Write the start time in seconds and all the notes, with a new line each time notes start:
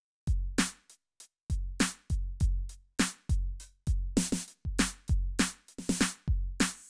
0.27 closed hi-hat, kick
0.58 closed hi-hat, snare
0.90 closed hi-hat
1.20 closed hi-hat
1.50 closed hi-hat, kick
1.80 closed hi-hat, snare
2.10 closed hi-hat, kick
2.40 closed hi-hat, kick
2.69 closed hi-hat
2.99 closed hi-hat, snare
3.29 open hi-hat, kick
3.60 open hi-hat, hi-hat pedal
3.87 closed hi-hat, kick
4.16 closed hi-hat, snare, hi-hat pedal
4.32 snare
4.48 closed hi-hat
4.65 kick
4.79 closed hi-hat, snare
5.08 closed hi-hat, kick
5.39 closed hi-hat, snare
5.66 closed hi-hat, hi-hat pedal
5.79 snare
5.89 snare
6.01 snare
6.28 kick
6.60 snare, crash